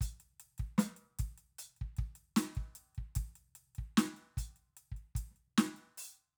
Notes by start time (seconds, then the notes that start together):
0.01 closed hi-hat, kick
0.20 closed hi-hat
0.40 closed hi-hat
0.58 kick, closed hi-hat
0.78 closed hi-hat, snare
0.97 closed hi-hat
1.19 kick, closed hi-hat
1.38 closed hi-hat
1.59 closed hi-hat
1.77 closed hi-hat
1.81 kick
1.97 kick, snare, closed hi-hat
2.16 closed hi-hat
2.37 closed hi-hat, snare
2.55 kick, closed hi-hat
2.75 closed hi-hat
2.95 kick, closed hi-hat
3.16 kick, closed hi-hat
3.36 closed hi-hat
3.55 closed hi-hat
3.75 kick, closed hi-hat
3.98 closed hi-hat, snare
4.17 closed hi-hat
4.37 closed hi-hat, kick
4.56 closed hi-hat
4.77 closed hi-hat
4.92 kick
4.97 closed hi-hat
5.15 kick, closed hi-hat
5.31 snare
5.36 closed hi-hat
5.58 closed hi-hat, snare
5.77 closed hi-hat
5.98 open hi-hat